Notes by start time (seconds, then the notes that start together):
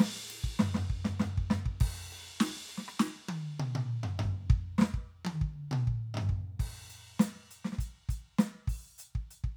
0.01 snare, ride
0.31 ride
0.45 kick
0.60 snare, floor tom
0.76 snare, floor tom
0.91 kick
1.06 snare, floor tom
1.21 snare, floor tom
1.39 kick
1.51 snare, floor tom
1.67 kick
1.81 kick, crash
2.12 ride
2.41 snare, ride
2.69 ride
2.79 snare
2.89 cross-stick
3.01 snare
3.30 high tom
3.61 mid tom
3.76 mid tom
4.04 floor tom
4.20 floor tom
4.25 kick
4.51 kick
4.79 snare
4.83 snare
4.95 kick
5.26 high tom
5.28 high tom
5.42 kick
5.72 mid tom
5.74 mid tom
5.88 kick
6.15 floor tom
6.18 floor tom
6.30 kick
6.61 kick, crash
6.91 closed hi-hat
7.21 closed hi-hat, snare
7.52 closed hi-hat
7.66 snare
7.73 snare
7.80 closed hi-hat, kick
8.10 closed hi-hat, kick
8.40 closed hi-hat, snare
8.69 open hi-hat, kick
8.99 closed hi-hat, hi-hat pedal
9.16 kick
9.32 closed hi-hat
9.45 kick